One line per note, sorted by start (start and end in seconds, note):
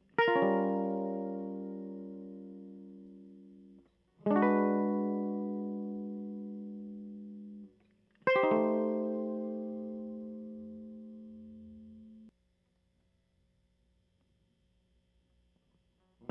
0.19 3.77 A#4
0.28 3.89 F4
0.36 3.85 C#4
0.43 3.84 G3
4.27 7.68 G#3
4.31 7.74 D4
4.36 7.78 F#4
4.42 7.73 B4
8.27 11.92 C5
8.36 12.37 G4
8.43 12.30 D#4
8.52 12.39 A3
8.58 8.63 E3